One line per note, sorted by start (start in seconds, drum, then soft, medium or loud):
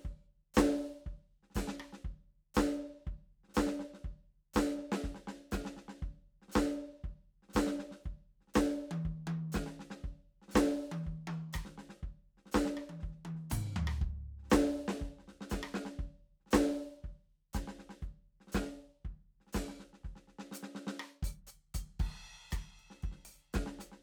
0.01 hi-hat pedal soft
0.05 kick soft
0.54 kick medium
0.54 snare loud
0.54 hi-hat pedal medium
1.07 kick soft
1.43 snare soft
1.51 snare soft
1.55 kick medium
1.55 snare medium
1.55 hi-hat pedal medium
1.68 snare medium
1.80 cross-stick medium
1.93 snare soft
2.05 kick soft
2.55 kick soft
2.55 snare loud
2.55 hi-hat pedal loud
3.07 kick soft
3.44 snare soft
3.49 snare soft
3.55 kick soft
3.55 snare loud
3.55 hi-hat pedal medium
3.67 snare medium
3.80 snare soft
3.94 snare soft
4.05 kick soft
4.54 kick soft
4.54 snare loud
4.54 hi-hat pedal medium
4.78 snare soft
4.92 snare loud
5.04 kick soft
5.04 snare soft
5.15 snare soft
5.28 snare medium
5.52 kick soft
5.52 snare medium
5.52 hi-hat pedal medium
5.66 snare medium
5.77 snare soft
5.89 snare soft
6.03 kick soft
6.42 snare soft
6.49 snare soft
6.49 hi-hat pedal medium
6.56 kick soft
6.56 snare loud
7.04 kick soft
7.43 snare soft
7.49 snare soft
7.54 kick soft
7.54 snare loud
7.54 hi-hat pedal medium
7.67 snare medium
7.79 snare soft
7.92 snare soft
8.03 kick soft
8.03 hi-hat pedal soft
8.41 snare soft
8.48 snare soft
8.54 kick soft
8.54 snare loud
8.54 hi-hat pedal medium
8.91 high tom loud
9.05 kick soft
9.28 high tom loud
9.53 kick soft
9.53 snare medium
9.53 hi-hat pedal medium
9.67 snare soft
9.80 snare soft
9.91 snare medium
10.04 kick soft
10.42 snare soft
10.48 snare soft
10.48 hi-hat pedal medium
10.52 kick soft
10.52 snare soft
10.56 snare loud
10.63 snare soft
10.82 snare soft
10.92 high tom medium
11.03 snare soft
11.07 kick soft
11.28 high tom medium
11.53 kick soft
11.53 cross-stick medium
11.53 hi-hat pedal loud
11.65 snare soft
11.78 snare soft
11.90 snare soft
12.03 kick soft
12.38 snare soft
12.46 snare soft
12.52 kick soft
12.52 snare loud
12.52 hi-hat pedal medium
12.66 snare medium
12.77 cross-stick medium
12.90 high tom medium
13.00 kick soft
13.00 snare soft
13.11 snare soft
13.25 high tom medium
13.36 snare soft
13.50 kick soft
13.50 hi-hat pedal medium
13.50 mid tom loud
13.65 snare soft
13.76 floor tom loud
13.88 cross-stick medium
14.02 kick medium
14.39 snare soft
14.43 snare soft
14.46 snare soft
14.51 kick medium
14.51 snare loud
14.51 hi-hat pedal medium
14.77 snare soft
14.88 snare loud
15.02 kick soft
15.02 snare soft
15.19 snare soft
15.28 snare soft
15.41 snare medium
15.50 kick soft
15.50 snare medium
15.50 hi-hat pedal medium
15.63 cross-stick medium
15.75 snare medium
15.86 snare soft
15.99 kick soft
16.41 snare soft
16.47 snare soft
16.51 snare soft
16.51 hi-hat pedal medium
16.54 kick soft
16.54 snare loud
17.04 kick soft
17.54 kick medium
17.54 snare medium
17.54 hi-hat pedal medium
17.68 snare soft
17.79 snare soft
17.90 snare soft
18.02 kick soft
18.02 hi-hat pedal soft
18.41 snare soft
18.48 snare soft
18.52 kick soft
18.52 snare loud
18.52 hi-hat pedal medium
18.62 snare soft
19.05 kick soft
19.41 snare soft
19.47 snare soft
19.53 kick soft
19.53 snare medium
19.53 hi-hat pedal medium
19.69 snare soft
19.80 snare soft
19.93 snare soft
20.04 kick soft
20.04 snare soft
20.16 snare soft
20.28 snare soft
20.39 snare soft
20.52 snare soft
20.52 hi-hat pedal loud
20.63 snare soft
20.75 snare medium
20.87 snare medium
21.00 cross-stick medium
21.23 open hi-hat medium
21.23 kick medium
21.47 hi-hat pedal medium
21.75 open hi-hat medium
21.75 kick medium
22.00 kick medium
22.00 crash medium
22.51 kick medium
22.51 cross-stick medium
22.51 closed hi-hat medium
22.51 hi-hat pedal soft
22.80 closed hi-hat soft
22.91 snare soft
23.03 kick medium
23.03 closed hi-hat soft
23.12 snare soft
23.26 snare soft
23.26 open hi-hat medium
23.53 kick medium
23.53 snare medium
23.53 closed hi-hat medium
23.53 hi-hat pedal soft
23.67 snare soft
23.79 closed hi-hat medium
23.79 snare soft
23.92 snare soft